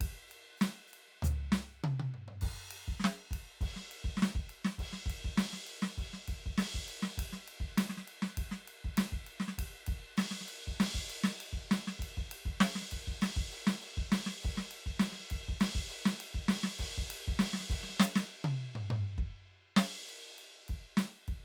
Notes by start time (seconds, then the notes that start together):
0.01 kick, ride
0.29 hi-hat pedal, ride
0.58 snare, hi-hat pedal
0.63 ride
0.88 hi-hat pedal
0.94 ride
1.08 snare
1.11 snare
1.16 snare
1.23 floor tom, hi-hat pedal
1.53 snare
1.84 high tom
2.00 high tom
2.14 mid tom
2.28 mid tom
2.42 kick, crash
2.71 ride
2.88 kick
3.00 snare
3.05 snare
3.31 kick, ride
3.61 kick, ride
3.77 snare
3.92 ride
4.05 kick
4.17 snare
4.23 snare
4.36 kick
4.50 ride
4.65 snare
4.79 kick, ride
4.93 snare
5.06 kick
5.10 ride
5.25 kick
5.38 snare, ride
5.53 snare
5.67 ride
5.83 snare
5.98 kick, ride
6.14 snare
6.28 kick, ride
6.46 kick
6.58 snare, ride
6.75 kick
6.89 ride
7.03 snare
7.18 kick, ride
7.33 snare
7.48 ride
7.61 kick
7.78 snare, ride
7.90 snare
7.98 snare
8.08 ride
8.23 snare
8.38 kick, ride
8.52 snare
8.68 ride
8.85 kick
8.98 snare, ride
9.13 kick
9.27 ride
9.40 snare
9.48 snare
9.59 kick, ride
9.87 kick, ride
10.18 snare, ride
10.31 snare
10.41 snare
10.49 ride
10.68 kick
10.80 snare, ride
10.95 kick
11.10 ride
11.24 snare
11.41 ride
11.53 kick
11.71 snare, ride
11.88 snare
12.00 kick, ride
12.18 kick
12.32 ride
12.46 kick
12.61 snare, ride
12.76 snare
12.82 snare
12.92 kick, ride
13.08 kick
13.22 snare, ride
13.37 kick
13.52 ride
13.67 snare
13.82 ride
13.98 kick
14.12 snare, ride
14.27 snare
14.44 kick, ride
14.58 snare
14.71 ride
14.87 kick
15.00 snare, ride
15.13 snare
15.20 snare
15.31 kick, ride
15.49 kick
15.61 snare, ride
15.75 kick
15.90 ride
16.06 snare
16.21 ride
16.35 kick
16.49 snare, ride
16.64 snare
16.79 kick, ride
16.98 kick
17.11 ride
17.28 kick
17.39 snare, ride
17.54 snare
17.61 snare
17.70 kick, ride
17.84 snare
17.90 snare
18.00 snare, hi-hat pedal
18.16 snare
18.45 high tom
18.76 mid tom
18.91 mid tom
19.18 kick
19.77 snare, ride
20.09 ride
20.39 ride
20.69 kick, ride
20.98 snare, ride
21.28 kick, ride